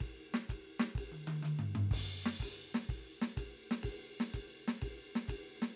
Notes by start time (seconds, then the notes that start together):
0.01 kick, ride
0.34 snare
0.49 kick, hi-hat pedal, ride
0.80 snare
0.96 kick, ride
1.12 high tom
1.28 closed hi-hat, high tom
1.43 hi-hat pedal, high tom
1.59 floor tom
1.68 kick
1.76 floor tom
1.92 kick, ride
2.06 kick
2.26 snare
2.40 kick, hi-hat pedal, ride
2.75 snare
2.90 kick, ride
3.22 snare
3.37 kick, hi-hat pedal, ride
3.71 snare
3.84 kick, ride
4.21 snare
4.34 kick, hi-hat pedal, ride
4.68 snare
4.82 kick, ride
5.16 snare
5.28 kick, hi-hat pedal, ride
5.62 snare